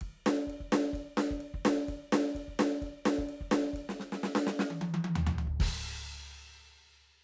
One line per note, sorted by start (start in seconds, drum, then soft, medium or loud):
0.02 kick soft
0.02 ride medium
0.26 snare loud
0.26 ride medium
0.47 kick soft
0.47 ride medium
0.60 kick soft
0.72 snare loud
0.72 ride medium
0.93 kick soft
0.93 ride soft
1.17 snare loud
1.17 ride medium
1.31 kick soft
1.40 ride medium
1.54 kick soft
1.65 snare loud
1.65 ride medium
1.88 kick soft
1.88 ride medium
2.12 snare loud
2.12 ride medium
2.35 kick soft
2.35 ride medium
2.48 kick soft
2.59 snare loud
2.59 ride medium
2.82 kick soft
2.82 ride soft
3.05 snare loud
3.05 ride medium
3.18 kick soft
3.29 ride medium
3.41 kick soft
3.51 snare loud
3.51 ride medium
3.66 snare soft
3.73 kick soft
3.73 ride medium
3.89 snare medium
4.00 snare medium
4.12 snare medium
4.23 snare loud
4.35 snare loud
4.47 snare loud
4.59 snare loud
4.70 high tom medium
4.81 high tom loud
4.94 high tom loud
5.04 high tom loud
5.15 floor tom loud
5.27 floor tom loud
5.38 floor tom medium
5.47 kick soft
5.60 kick loud
5.60 crash loud